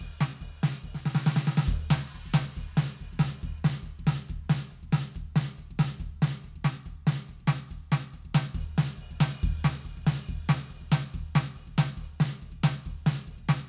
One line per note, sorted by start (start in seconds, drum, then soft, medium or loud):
0.01 kick soft
0.01 percussion medium
0.21 snare loud
0.21 percussion medium
0.41 kick soft
0.41 snare soft
0.41 percussion medium
0.63 snare loud
0.63 percussion medium
0.84 kick soft
0.84 percussion medium
0.95 snare medium
1.06 snare loud
1.15 snare loud
1.26 snare loud
1.36 snare loud
1.47 snare loud
1.68 kick medium
1.68 percussion loud
1.91 snare loud
1.91 crash medium
2.14 kick soft
2.14 percussion medium
2.26 kick soft
2.34 snare loud
2.34 percussion medium
2.49 snare soft
2.57 kick medium
2.57 percussion medium
2.77 snare loud
2.77 percussion medium
2.97 kick soft
2.97 snare soft
2.97 percussion medium
3.13 kick soft
3.19 snare loud
3.19 percussion medium
3.42 kick medium
3.42 snare soft
3.42 percussion medium
3.64 snare loud
3.64 percussion medium
3.83 kick soft
3.83 snare soft
3.83 percussion medium
3.99 kick soft
4.07 snare loud
4.07 percussion medium
4.29 kick medium
4.29 percussion medium
4.50 snare loud
4.50 percussion medium
4.70 kick soft
4.70 snare soft
4.70 percussion medium
4.83 kick soft
4.93 snare loud
4.93 percussion medium
5.14 kick medium
5.14 snare soft
5.14 percussion medium
5.36 snare loud
5.36 percussion medium
5.57 kick soft
5.57 snare soft
5.57 percussion soft
5.71 kick soft
5.79 snare loud
5.79 percussion medium
5.99 kick medium
5.99 snare soft
5.99 percussion medium
6.22 snare loud
6.22 percussion medium
6.43 kick soft
6.43 snare soft
6.43 percussion medium
6.56 kick soft
6.65 snare loud
6.65 percussion medium
6.84 kick soft
6.84 snare soft
6.84 percussion medium
7.07 snare loud
7.07 percussion medium
7.28 kick soft
7.28 percussion medium
7.40 kick soft
7.48 snare loud
7.48 percussion medium
7.68 kick soft
7.68 snare soft
7.68 percussion medium
7.92 snare loud
7.92 percussion medium
8.10 kick soft
8.10 snare soft
8.10 percussion medium
8.25 kick soft
8.35 snare loud
8.35 percussion loud
8.55 kick medium
8.55 percussion medium
8.78 snare loud
8.78 percussion medium
8.98 kick soft
8.98 snare soft
8.98 percussion medium
9.11 kick soft
9.21 snare loud
9.21 percussion loud
9.40 kick loud
9.40 snare soft
9.40 percussion medium
9.64 snare loud
9.64 percussion loud
9.85 kick soft
9.85 percussion soft
9.97 kick soft
10.07 snare loud
10.07 percussion medium
10.26 kick medium
10.26 snare soft
10.26 percussion soft
10.49 snare loud
10.49 percussion loud
10.70 kick soft
10.70 snare soft
10.70 percussion medium
10.81 kick soft
10.92 snare loud
10.92 percussion medium
11.14 kick medium
11.14 percussion soft
11.35 snare loud
11.35 percussion medium
11.56 kick soft
11.56 snare soft
11.56 percussion medium
11.67 kick soft
11.78 snare loud
11.78 percussion medium
11.97 kick medium
11.97 snare soft
11.97 percussion medium
12.20 snare loud
12.20 percussion medium
12.42 kick soft
12.42 snare soft
12.42 percussion soft
12.52 kick soft
12.64 snare loud
12.64 percussion medium
12.86 kick medium
12.86 percussion medium
13.06 snare loud
13.06 percussion medium
13.27 kick soft
13.27 snare soft
13.27 percussion medium
13.38 kick soft
13.49 snare loud
13.49 percussion medium